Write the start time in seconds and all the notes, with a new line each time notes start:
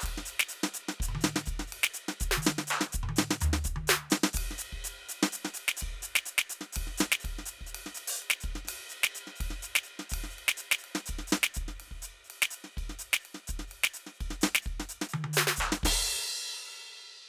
0.01 kick, hi-hat pedal
0.06 kick, ride
0.13 kick
0.18 snare
0.26 hi-hat pedal
0.30 ride
0.40 snare
0.49 hi-hat pedal
0.53 ride
0.64 snare
0.74 hi-hat pedal, ride bell
0.89 snare
1.00 kick, hi-hat pedal
1.07 kick, mid tom, ride
1.11 kick, high tom
1.21 kick, snare, hi-hat pedal
1.36 snare
1.46 kick, hi-hat pedal, ride bell
1.54 kick
1.57 kick, snare
1.68 hi-hat pedal
1.73 ride
1.84 snare
1.94 hi-hat pedal, ride bell
2.09 snare
2.20 kick, hi-hat pedal
2.29 kick, snare
2.32 kick
2.38 high tom
2.43 hi-hat pedal
2.47 snare
2.59 snare
2.67 percussion, hi-hat pedal
2.81 snare
2.93 kick, hi-hat pedal
3.01 kick, mid tom
3.05 kick
3.09 high tom
3.16 snare, hi-hat pedal
3.31 snare
3.41 floor tom, hi-hat pedal
3.53 snare
3.65 kick, hi-hat pedal
3.72 kick
3.75 kick, high tom
3.88 snare, hi-hat pedal
4.11 snare, hi-hat pedal
4.24 snare
4.34 kick, hi-hat pedal, ride
4.42 kick
4.51 snare
4.58 hi-hat pedal, ride
4.73 kick
4.84 hi-hat pedal, ride
5.09 hi-hat pedal, ride
5.23 snare
5.33 hi-hat pedal, ride
5.45 snare
5.54 hi-hat pedal, ride
5.68 snare
5.77 hi-hat pedal
5.81 kick, ride bell
5.88 kick
5.91 kick
6.03 hi-hat pedal, ride
6.16 snare
6.26 hi-hat pedal, ride
6.38 snare
6.50 hi-hat pedal, ride
6.61 snare
6.73 kick, hi-hat pedal, ride
6.83 kick
6.87 kick, snare
6.98 snare, hi-hat pedal
7.12 snare
7.20 hi-hat pedal
7.25 kick, ride
7.31 kick
7.34 kick
7.39 snare
7.46 hi-hat pedal, ride
7.59 kick, snare
7.63 snare
7.66 snare, hi-hat pedal
7.75 ride
7.86 snare
7.95 hi-hat pedal, ride
8.08 open hi-hat
8.16 hi-hat pedal
8.22 ride
8.30 snare
8.41 kick, hi-hat pedal
8.45 ride bell
8.50 kick
8.56 snare
8.65 snare, hi-hat pedal, ride
8.90 hi-hat pedal, ride
9.04 snare
9.15 hi-hat pedal, ride
9.27 snare
9.36 hi-hat pedal
9.41 kick, ride
9.47 kick, snare
9.63 hi-hat pedal, ride
9.76 snare
9.84 hi-hat pedal
9.88 ride bell
10.00 snare
10.10 kick, hi-hat pedal
10.14 ride
10.18 kick
10.21 kick, snare
10.31 hi-hat pedal
10.39 ride
10.48 snare
10.58 hi-hat pedal, ride
10.72 snare
10.79 hi-hat pedal
10.84 ride
10.95 snare
11.06 kick, hi-hat pedal, ride bell
11.15 kick
11.18 kick, snare
11.28 hi-hat pedal
11.33 snare
11.44 snare
11.54 kick, hi-hat pedal, ride bell
11.63 kick
11.67 kick, snare
11.75 hi-hat pedal
11.80 snare, ride
11.88 kick, snare
11.93 snare
11.96 snare
12.00 snare, hi-hat pedal
12.05 ride bell
12.25 hi-hat pedal
12.30 ride
12.42 snare
12.51 hi-hat pedal, ride
12.64 snare
12.71 hi-hat pedal
12.78 kick, ride bell
12.84 kick
12.90 snare
12.99 hi-hat pedal, ride
13.13 snare
13.21 hi-hat pedal
13.26 ride
13.35 snare
13.48 kick, hi-hat pedal, ride bell
13.58 kick, snare
13.68 hi-hat pedal, ride
13.84 snare
13.94 hi-hat pedal, ride
14.07 snare
14.14 hi-hat pedal
14.21 kick, ride bell
14.27 kick
14.30 kick, snare
14.42 snare, hi-hat pedal
14.55 snare
14.63 kick, hi-hat pedal
14.68 ride bell
14.73 kick
14.80 snare
14.89 hi-hat pedal, ride bell
15.02 snare
15.09 hi-hat pedal
15.14 high tom
15.24 high tom
15.34 snare, hi-hat pedal
15.56 kick, percussion, hi-hat pedal
15.64 kick
15.67 kick
15.72 snare
15.84 kick, snare, hi-hat pedal, crash
15.90 kick
15.96 kick